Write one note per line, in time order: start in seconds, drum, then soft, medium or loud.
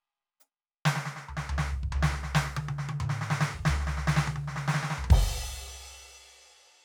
0.40 hi-hat pedal medium
0.85 snare loud
0.95 snare medium
1.16 snare medium
1.28 floor tom medium
1.37 snare medium
1.49 floor tom loud
1.58 snare loud
1.72 kick soft
1.83 kick medium
1.92 floor tom loud
2.02 snare loud
2.13 snare medium
2.23 snare medium
2.35 snare loud
2.45 snare medium
2.57 high tom loud
2.68 high tom loud
2.78 snare medium
2.89 high tom loud
3.00 mid tom loud
3.09 snare medium
3.21 snare medium
3.30 snare loud
3.41 snare loud
3.54 kick soft
3.59 kick soft
3.65 snare loud
3.65 floor tom loud
3.65 hi-hat pedal soft
3.80 snare medium
3.87 snare medium
3.97 snare medium
4.07 snare loud
4.07 hi-hat pedal medium
4.16 snare loud
4.27 high tom loud
4.36 high tom medium
4.47 snare medium
4.56 snare medium
4.68 snare loud
4.74 snare loud
4.83 snare medium
4.90 snare medium
4.97 floor tom loud
5.04 floor tom loud
5.10 kick loud
5.10 crash loud